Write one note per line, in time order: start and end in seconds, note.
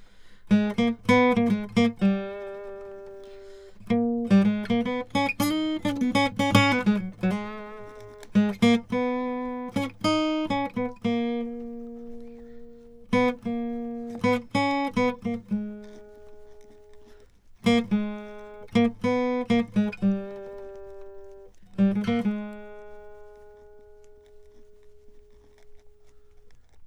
0.52 0.76 G#3
0.80 0.96 A#3
1.10 1.36 B3
1.38 1.55 A#3
1.52 1.69 G#3
1.78 1.98 A#3
2.03 3.75 G3
3.92 4.31 A#3
4.32 4.45 G3
4.47 4.69 G#3
4.71 4.85 A#3
4.87 5.07 B3
5.17 5.33 C#4
5.41 5.52 D4
5.52 5.81 D#4
5.87 6.00 C#4
6.03 6.16 B3
6.16 6.32 C#4
6.41 6.56 C#4
6.56 6.73 C#4
6.74 6.88 B3
6.88 6.97 G#3
6.97 7.04 F#3
7.25 7.33 F#3
7.33 8.31 G#3
8.37 8.56 G#3
8.64 8.84 A#3
8.94 9.73 B3
9.78 9.92 C#4
10.06 10.50 D#4
10.52 10.71 C#4
10.78 10.98 B3
11.06 11.45 A#3
13.14 13.38 B3
13.48 14.21 A#3
14.26 14.43 B3
14.56 14.93 C#4
14.98 15.18 B3
15.27 15.44 A#3
15.53 17.29 G#3
17.68 17.88 A#3
17.93 18.68 G#3
18.77 18.94 A#3
19.05 19.47 B3
19.51 19.69 A#3
19.78 19.93 G#3
20.04 21.53 G3
21.80 21.94 G3
22.09 22.25 A#3
22.27 26.24 G#3